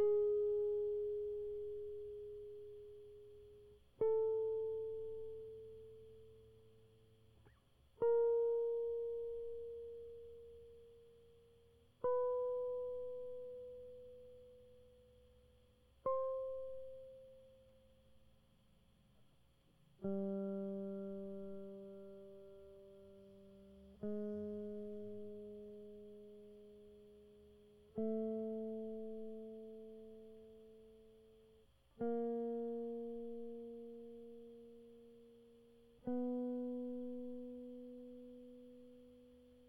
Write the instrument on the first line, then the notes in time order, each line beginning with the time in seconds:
electric guitar
0.00 G#4
4.02 A4
8.03 A#4
12.05 B4
16.07 C5
20.05 G3
24.04 G#3
27.99 A3
32.02 A#3
36.08 B3